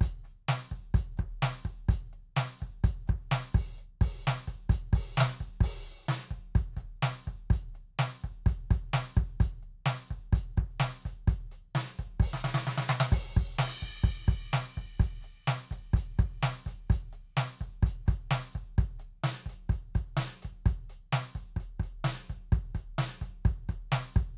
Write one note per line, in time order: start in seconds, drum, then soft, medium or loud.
0.01 closed hi-hat loud
0.01 kick loud
0.24 snare soft
0.24 closed hi-hat soft
0.48 closed hi-hat loud
0.48 snare loud
0.56 snare soft
0.71 kick medium
0.71 closed hi-hat soft
0.94 closed hi-hat loud
0.94 kick loud
1.18 kick loud
1.18 closed hi-hat medium
1.42 closed hi-hat loud
1.42 snare loud
1.65 kick medium
1.65 closed hi-hat medium
1.89 closed hi-hat loud
1.89 kick loud
2.13 closed hi-hat soft
2.36 closed hi-hat medium
2.36 snare loud
2.61 kick medium
2.61 closed hi-hat soft
2.84 closed hi-hat loud
2.84 kick loud
3.07 kick loud
3.07 snare soft
3.07 closed hi-hat medium
3.31 snare loud
3.31 closed hi-hat medium
3.55 open hi-hat medium
3.55 kick loud
3.78 hi-hat pedal soft
3.78 open hi-hat medium
4.01 open hi-hat medium
4.01 kick loud
4.24 snare loud
4.24 hi-hat pedal soft
4.28 closed hi-hat soft
4.47 closed hi-hat medium
4.47 kick medium
4.70 closed hi-hat loud
4.70 kick loud
4.93 open hi-hat loud
4.93 kick loud
4.93 snare soft
5.17 snare loud
5.17 hi-hat pedal soft
5.20 snare loud
5.40 kick medium
5.61 open hi-hat loud
5.61 kick loud
5.86 snare soft
5.86 open hi-hat soft
6.06 snare loud
6.06 hi-hat pedal soft
6.10 closed hi-hat loud
6.31 kick medium
6.31 closed hi-hat soft
6.55 closed hi-hat medium
6.55 kick loud
6.72 snare soft
6.77 kick medium
6.77 closed hi-hat medium
7.03 closed hi-hat loud
7.03 snare loud
7.16 snare soft
7.18 snare soft
7.27 kick medium
7.27 closed hi-hat medium
7.50 closed hi-hat medium
7.50 kick loud
7.74 snare soft
7.74 closed hi-hat soft
7.99 closed hi-hat medium
7.99 snare loud
8.24 kick medium
8.24 closed hi-hat medium
8.46 closed hi-hat medium
8.46 kick loud
8.71 closed hi-hat medium
8.71 kick loud
8.71 snare soft
8.93 closed hi-hat medium
8.93 snare loud
9.17 kick loud
9.17 closed hi-hat medium
9.40 closed hi-hat loud
9.40 kick loud
9.63 closed hi-hat soft
9.86 closed hi-hat medium
9.86 snare loud
10.11 kick medium
10.11 closed hi-hat soft
10.33 closed hi-hat loud
10.33 kick loud
10.57 kick loud
10.57 snare soft
10.57 closed hi-hat medium
10.80 closed hi-hat loud
10.80 snare loud
10.96 snare soft
11.05 closed hi-hat medium
11.05 kick medium
11.28 closed hi-hat medium
11.28 kick loud
11.51 closed hi-hat medium
11.51 snare soft
11.75 closed hi-hat loud
11.75 snare loud
11.99 closed hi-hat medium
11.99 kick medium
12.20 open hi-hat loud
12.20 kick loud
12.33 snare medium
12.40 hi-hat pedal soft
12.44 snare loud
12.67 snare loud
12.78 snare loud
12.83 kick soft
12.89 snare loud
13.00 snare loud
13.12 open hi-hat loud
13.12 kick loud
13.37 kick loud
13.56 snare loud
13.56 hi-hat pedal soft
13.56 crash loud
13.66 snare medium
13.82 closed hi-hat soft
13.82 kick medium
14.04 closed hi-hat medium
14.04 kick loud
14.28 closed hi-hat medium
14.28 kick loud
14.28 snare soft
14.53 closed hi-hat loud
14.53 snare loud
14.69 snare soft
14.77 kick medium
14.77 closed hi-hat medium
15.00 closed hi-hat loud
15.00 kick loud
15.21 snare soft
15.21 closed hi-hat medium
15.47 closed hi-hat loud
15.47 snare loud
15.71 kick medium
15.71 closed hi-hat loud
15.94 closed hi-hat loud
15.94 kick loud
16.17 kick loud
16.17 snare soft
16.17 closed hi-hat loud
16.43 closed hi-hat loud
16.43 snare loud
16.66 closed hi-hat medium
16.66 kick medium
16.90 closed hi-hat loud
16.90 kick loud
17.12 snare soft
17.12 closed hi-hat medium
17.37 closed hi-hat loud
17.37 snare loud
17.53 snare soft
17.61 kick medium
17.61 closed hi-hat medium
17.83 closed hi-hat loud
17.83 kick loud
18.06 closed hi-hat medium
18.06 kick loud
18.06 snare soft
18.31 closed hi-hat loud
18.31 snare loud
18.55 kick medium
18.55 closed hi-hat soft
18.78 closed hi-hat medium
18.78 kick loud
18.98 snare soft
18.98 closed hi-hat medium
19.24 closed hi-hat loud
19.24 snare loud
19.46 closed hi-hat medium
19.46 kick medium
19.69 closed hi-hat medium
19.69 kick loud
19.95 closed hi-hat medium
19.95 kick loud
20.17 closed hi-hat loud
20.17 snare loud
20.42 closed hi-hat medium
20.42 kick medium
20.66 closed hi-hat medium
20.66 kick loud
20.90 closed hi-hat medium
21.13 closed hi-hat loud
21.13 snare loud
21.35 closed hi-hat medium
21.35 kick medium
21.56 closed hi-hat medium
21.56 kick medium
21.80 closed hi-hat medium
21.80 kick medium
22.04 closed hi-hat medium
22.04 snare loud
22.29 closed hi-hat medium
22.29 kick medium
22.52 closed hi-hat medium
22.52 kick loud
22.75 closed hi-hat medium
22.75 kick medium
22.98 closed hi-hat medium
22.98 snare loud
23.21 closed hi-hat medium
23.21 kick medium
23.45 closed hi-hat medium
23.45 kick loud
23.69 closed hi-hat medium
23.69 kick medium
23.92 closed hi-hat medium
23.92 snare loud
24.16 closed hi-hat medium
24.16 kick loud